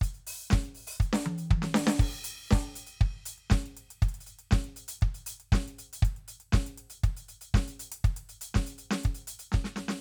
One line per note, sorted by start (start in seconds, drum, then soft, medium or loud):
0.01 closed hi-hat medium
0.01 kick loud
0.01 hi-hat pedal soft
0.15 closed hi-hat soft
0.27 open hi-hat loud
0.40 open hi-hat soft
0.48 snare loud
0.48 hi-hat pedal soft
0.53 kick loud
0.64 closed hi-hat soft
0.75 open hi-hat medium
0.88 open hi-hat loud
0.94 hi-hat pedal soft
1.01 closed hi-hat medium
1.01 kick loud
1.14 snare loud
1.26 high tom loud
1.39 open hi-hat medium
1.44 hi-hat pedal soft
1.51 kick loud
1.51 high tom loud
1.63 snare medium
1.75 snare loud
1.88 snare loud
2.00 kick loud
2.00 crash loud
2.13 closed hi-hat medium
2.25 closed hi-hat loud
2.38 open hi-hat soft
2.47 hi-hat pedal soft
2.51 kick loud
2.51 snare loud
2.63 closed hi-hat soft
2.76 closed hi-hat medium
2.87 closed hi-hat medium
3.01 closed hi-hat soft
3.01 kick loud
3.12 closed hi-hat soft
3.26 closed hi-hat loud
3.38 closed hi-hat soft
3.51 kick loud
3.51 snare loud
3.66 closed hi-hat soft
3.77 closed hi-hat medium
3.91 closed hi-hat medium
4.03 kick loud
4.03 closed hi-hat medium
4.09 closed hi-hat medium
4.15 closed hi-hat medium
4.21 closed hi-hat medium
4.27 closed hi-hat medium
4.39 closed hi-hat medium
4.52 kick loud
4.52 snare loud
4.65 closed hi-hat soft
4.77 closed hi-hat medium
4.89 closed hi-hat loud
5.02 kick loud
5.02 closed hi-hat soft
5.15 closed hi-hat medium
5.27 closed hi-hat loud
5.41 closed hi-hat medium
5.53 kick loud
5.53 snare loud
5.68 closed hi-hat medium
5.79 closed hi-hat medium
5.94 closed hi-hat medium
6.03 kick loud
6.03 closed hi-hat medium
6.17 closed hi-hat soft
6.29 closed hi-hat medium
6.41 closed hi-hat medium
6.53 kick loud
6.53 snare loud
6.67 closed hi-hat medium
6.78 closed hi-hat medium
6.91 closed hi-hat medium
7.04 kick loud
7.04 closed hi-hat medium
7.17 closed hi-hat medium
7.29 closed hi-hat medium
7.42 closed hi-hat medium
7.55 kick loud
7.55 snare loud
7.68 closed hi-hat medium
7.80 closed hi-hat loud
7.92 closed hi-hat loud
8.05 kick loud
8.05 closed hi-hat medium
8.17 closed hi-hat medium
8.30 closed hi-hat medium
8.42 closed hi-hat loud
8.55 kick loud
8.55 snare loud
8.67 closed hi-hat medium
8.79 closed hi-hat medium
8.91 snare loud
9.04 kick loud
9.04 closed hi-hat medium
9.15 closed hi-hat medium
9.28 closed hi-hat loud
9.40 closed hi-hat medium
9.53 kick loud
9.53 snare medium
9.65 snare medium
9.77 snare medium
9.89 snare loud